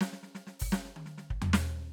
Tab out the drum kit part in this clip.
Hi-hat    |-----op-x-------|
Snare     |oggog-og-gg--o--|
High tom  |--------o-------|
Floor tom |------------o---|
Kick      |-----o-----o----|